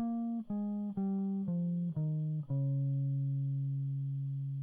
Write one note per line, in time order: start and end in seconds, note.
0.00 0.44 A#3
0.51 0.94 G#3
0.98 1.50 G3
1.49 1.94 F3
1.98 2.45 D#3
2.51 4.63 C#3